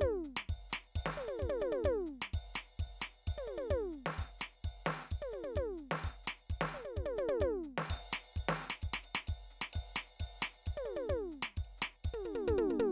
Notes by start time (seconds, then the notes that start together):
0.01 kick, high tom
0.24 hi-hat pedal
0.37 snare
0.49 kick, ride bell
0.56 kick
0.70 snare, hi-hat pedal
0.91 hi-hat pedal
0.96 kick, ride
1.06 snare
1.16 hi-hat pedal, high tom
1.28 high tom
1.39 kick, high tom
1.49 high tom
1.60 hi-hat pedal, high tom
1.72 high tom
1.85 kick, high tom
2.06 hi-hat pedal
2.22 snare
2.34 kick, ride bell
2.54 snare, hi-hat pedal
2.80 kick, ride bell
2.87 kick
3.00 snare, hi-hat pedal
3.27 kick, ride
3.38 high tom
3.46 hi-hat pedal, high tom
3.58 high tom
3.70 kick, high tom
3.92 hi-hat pedal
4.06 snare
4.19 kick, ride bell
4.39 snare, hi-hat pedal
4.64 kick, ride bell
4.85 snare, hi-hat pedal
5.11 kick, ride
5.22 high tom
5.31 hi-hat pedal, high tom
5.44 high tom
5.56 kick, high tom
5.77 hi-hat pedal
5.92 snare
6.04 kick, ride bell
6.24 hi-hat pedal
6.28 snare
6.50 kick, ride bell
6.61 snare
6.70 hi-hat pedal
6.74 high tom
6.85 high tom
6.96 kick, high tom
7.06 high tom
7.17 hi-hat pedal, high tom
7.29 high tom
7.41 kick, high tom
7.64 hi-hat pedal
7.78 snare
7.90 kick, ride
8.10 snare, hi-hat pedal
8.36 kick, ride bell
8.44 kick
8.49 snare
8.57 hi-hat pedal, ride
8.70 snare
8.82 kick, ride bell
8.94 snare
9.03 hi-hat pedal, ride
9.15 snare
9.28 kick, ride bell
9.50 hi-hat pedal
9.62 snare
9.73 kick, ride bell
9.95 snare, hi-hat pedal
10.20 kick, ride bell
10.40 snare, hi-hat pedal
10.66 kick, ride
10.77 high tom
10.85 hi-hat pedal, high tom
10.96 high tom
11.09 kick, high tom
11.32 hi-hat pedal
11.43 snare
11.57 kick, ride bell
11.65 ride
11.78 hi-hat pedal
11.82 snare
12.04 kick, ride
12.14 mid tom
12.24 hi-hat pedal, mid tom
12.35 mid tom
12.48 kick, mid tom
12.58 mid tom
12.69 hi-hat pedal, mid tom
12.79 mid tom